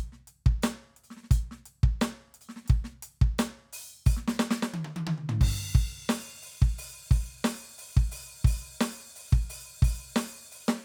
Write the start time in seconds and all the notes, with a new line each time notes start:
0.13 snare
0.28 closed hi-hat
0.47 kick
0.63 closed hi-hat, snare
0.97 closed hi-hat
1.04 closed hi-hat
1.11 snare
1.17 snare
1.24 snare
1.32 closed hi-hat, kick
1.52 snare
1.66 closed hi-hat
1.84 kick, snare
2.02 closed hi-hat, snare
2.35 closed hi-hat
2.42 closed hi-hat
2.50 snare
2.57 snare
2.66 snare, closed hi-hat
2.70 kick
2.85 snare
3.03 closed hi-hat
3.22 kick
3.39 closed hi-hat, snare
3.73 open hi-hat
4.07 open hi-hat, kick
4.14 snare, hi-hat pedal
4.28 snare
4.40 snare
4.51 snare
4.63 snare
4.74 high tom
4.85 high tom
4.97 high tom
5.08 high tom
5.18 mid tom
5.30 floor tom
5.42 kick, crash
5.76 kick
6.10 open hi-hat, snare
6.43 open hi-hat
6.62 kick
6.79 open hi-hat
7.12 open hi-hat, kick
7.45 open hi-hat, snare
7.79 open hi-hat
7.97 kick
8.12 open hi-hat
8.45 open hi-hat, kick
8.81 open hi-hat, snare
9.16 open hi-hat
9.33 kick
9.50 open hi-hat
9.83 open hi-hat, kick
10.17 open hi-hat, snare
10.52 open hi-hat
10.69 snare